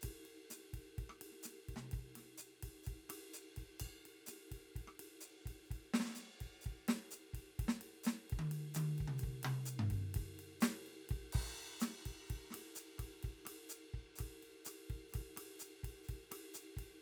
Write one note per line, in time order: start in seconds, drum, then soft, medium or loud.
0.01 kick soft
0.01 snare soft
0.01 hi-hat pedal soft
0.01 ride medium
0.25 ride soft
0.50 snare soft
0.50 hi-hat pedal medium
0.50 ride medium
0.74 kick soft
0.74 ride soft
0.78 kick soft
0.98 kick soft
0.98 ride soft
1.04 kick soft
1.09 cross-stick soft
1.09 snare soft
1.21 ride medium
1.32 snare soft
1.43 snare soft
1.43 hi-hat pedal medium
1.43 ride soft
1.69 kick soft
1.69 ride soft
1.74 kick soft
1.74 snare soft
1.74 mid tom soft
1.92 kick soft
1.92 ride soft
1.99 kick soft
2.15 snare soft
2.15 ride medium
2.16 snare soft
2.38 hi-hat pedal medium
2.38 ride soft
2.63 kick soft
2.63 ride medium
2.68 kick soft
2.84 kick soft
2.84 hi-hat pedal soft
2.84 ride soft
2.93 kick soft
3.10 cross-stick soft
3.10 ride medium
3.34 hi-hat pedal medium
3.34 ride soft
3.56 kick soft
3.56 ride soft
3.63 kick soft
3.79 kick soft
3.79 hi-hat pedal soft
3.79 ride bell medium
3.86 kick soft
4.06 ride soft
4.26 snare soft
4.26 hi-hat pedal medium
4.26 ride medium
4.51 kick soft
4.51 ride soft
4.56 kick soft
4.76 kick soft
4.76 ride soft
4.81 kick soft
4.87 cross-stick soft
4.87 snare soft
5.00 ride medium
5.21 hi-hat pedal medium
5.21 ride soft
5.46 kick soft
5.46 ride soft
5.51 kick soft
5.65 hi-hat pedal soft
5.71 kick soft
5.71 ride soft
5.76 kick soft
5.94 snare medium
5.94 ride soft
6.00 snare medium
6.05 snare soft
6.09 snare soft
6.12 snare soft
6.12 hi-hat pedal medium
6.16 snare soft
6.16 ride soft
6.19 snare soft
6.23 snare soft
6.26 snare soft
6.41 kick soft
6.41 ride soft
6.46 kick soft
6.61 hi-hat pedal soft
6.61 ride soft
6.66 kick soft
6.72 kick soft
6.88 snare medium
6.88 ride medium
7.11 hi-hat pedal medium
7.11 ride soft
7.19 snare soft
7.34 kick soft
7.34 snare soft
7.34 ride soft
7.39 kick soft
7.39 snare soft
7.59 kick soft
7.59 ride medium
7.65 kick soft
7.65 snare medium
7.81 ride medium
8.04 snare medium
8.04 hi-hat pedal medium
8.04 ride medium
8.30 kick soft
8.30 ride soft
8.38 kick soft
8.38 high tom medium
8.51 ride medium
8.74 hi-hat pedal medium
8.74 high tom loud
8.74 ride medium
8.98 kick soft
8.98 ride soft
9.06 kick soft
9.06 mid tom medium
9.18 hi-hat pedal soft
9.18 ride medium
9.23 kick soft
9.29 kick soft
9.43 mid tom loud
9.43 ride medium
9.66 hi-hat pedal medium
9.66 ride soft
9.79 floor tom medium
9.90 kick soft
9.90 ride soft
9.96 kick soft
10.14 kick soft
10.14 ride medium
10.22 kick soft
10.39 ride soft
10.61 snare medium
10.61 hi-hat pedal medium
10.61 ride medium
10.86 ride soft
10.92 snare soft
10.96 snare soft
11.09 kick soft
11.09 ride medium
11.17 kick soft
11.33 kick medium
11.33 crash medium
11.80 snare medium
11.80 hi-hat pedal medium
11.80 ride medium
12.06 kick soft
12.06 ride soft
12.11 kick soft
12.26 kick soft
12.26 hi-hat pedal soft
12.26 ride medium
12.36 kick soft
12.51 cross-stick soft
12.51 snare soft
12.51 ride medium
12.75 hi-hat pedal medium
12.75 ride soft
12.98 kick soft
12.98 cross-stick soft
12.98 ride medium
13.05 kick soft
13.23 kick soft
13.23 ride soft
13.30 kick soft
13.45 cross-stick soft
13.45 snare soft
13.45 ride medium
13.69 hi-hat pedal medium
13.94 kick soft
13.94 ride soft
13.99 kick soft
14.16 cross-stick soft
14.16 hi-hat pedal soft
14.16 ride medium
14.20 kick soft
14.26 kick soft
14.43 ride soft
14.65 cross-stick soft
14.65 hi-hat pedal medium
14.65 ride medium
14.90 kick soft
14.90 ride soft
14.95 kick soft
15.09 cross-stick soft
15.09 hi-hat pedal soft
15.14 kick soft
15.14 ride medium
15.21 kick soft
15.37 cross-stick soft
15.37 ride medium
15.59 hi-hat pedal medium
15.59 ride soft
15.84 kick soft
15.84 ride medium
15.89 kick soft
16.04 hi-hat pedal soft
16.09 kick soft
16.09 ride soft
16.14 kick soft
16.31 cross-stick soft
16.31 snare soft
16.31 ride medium
16.54 hi-hat pedal medium
16.54 ride soft
16.77 kick soft
16.77 ride medium
16.82 kick soft